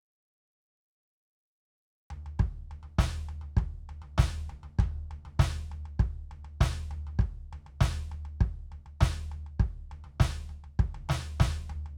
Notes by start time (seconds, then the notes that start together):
2.10 floor tom
2.26 floor tom
2.39 kick, floor tom
2.71 floor tom
2.83 floor tom
2.98 kick, snare, floor tom
3.29 floor tom
3.41 floor tom
3.57 kick, floor tom
3.89 floor tom
4.02 floor tom
4.18 kick, snare, floor tom
4.49 floor tom
4.63 floor tom
4.79 kick, floor tom
5.11 floor tom
5.25 floor tom
5.39 kick, snare, floor tom
5.71 floor tom
5.85 floor tom
5.99 kick, floor tom
6.31 floor tom
6.45 floor tom
6.61 kick, snare, floor tom
6.91 floor tom
7.07 floor tom
7.19 kick, floor tom
7.53 floor tom
7.66 floor tom
7.81 kick, snare, floor tom
8.12 floor tom
8.25 floor tom
8.41 kick, floor tom
8.72 floor tom
8.86 floor tom
9.01 kick, snare, floor tom
9.31 floor tom
9.46 floor tom
9.60 kick, floor tom
9.91 floor tom
10.04 floor tom
10.20 kick, snare, floor tom
10.49 floor tom
10.64 floor tom
10.79 kick, floor tom
10.94 floor tom
11.09 snare, floor tom
11.40 kick, snare, floor tom
11.70 floor tom
11.86 floor tom